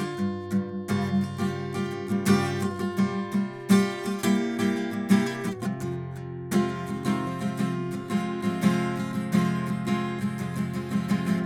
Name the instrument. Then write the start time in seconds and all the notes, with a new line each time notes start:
acoustic guitar
0.00 G2 D3 F4
0.20 G2
0.52 G2 G3
0.90 G2 C#3 G3 F4 G4
1.16 C#3
1.25 F4 G4
1.40 G2 C#3 G3 F4 G4
1.76 C#3 G3 F4 G4
1.93 G2 C#3 G3
2.09 G3 F4 G4
2.13 G2 C#3
2.28 G2 C#3 G3 F4 G4
2.63 G3 F4 G4
2.81 G3 F4 G4
2.99 C3 G3 F4 G4
3.34 C3 G3 F4 G4
3.71 C3 G3 F4 G4
4.06 G3 F4 G4
4.25 C3 G3 A#3 E4 G4
4.60 C3 G3 A#3 E4 G4
4.78 G3 A#3
4.92 C3 G3 A#3 E4 G4
5.11 C3 G3 A#3 E4 G4
5.28 A#3 E4
5.46 E2 G3 E4 F#4
5.63 C3 F3 C4 F4
5.82 F2 C3 F3
6.18 F2 C3
6.53 F2 C3 F3 G#3 C4 F4
6.88 F2 D#3 G#3 C4 F4
7.06 F2 C3 D#3 G#3 C4 F4
7.29 F3
7.42 C3 F3 G#3 C4 F4
7.60 C3 F3 G#3 C4 F4
7.93 F2 C3 F3 G#3 C4 F4
8.11 C3 F3 G#3 C4 F4
8.30 C3
8.45 C3 F3 G#3 C4 F4
8.63 F2 C3 F3 G#3 C4 F4
8.98 C3 G#3 C4 F4
9.05 F3
9.13 F3 G#3 C4 F4
9.18 C3
9.34 F2 C3 F3 G#3 C4 F4
9.68 F2 C3 F3 G#3 C4 F4
9.88 F3 G#3 C4 F4
10.20 F3 G#3 C4 F4
10.24 F2 C3
10.40 F2 C3 F3 G#3 C4 F4
10.56 C3 F3 G#3 C4 F4
10.60 F2
10.75 C3 F3 G#3 C4 F4
10.92 F2 C3 F3 G#3 C4 F4
11.10 F2 C3 F3 G#3 C4 F4
11.28 F2 C3 F3 G#3 C4 F4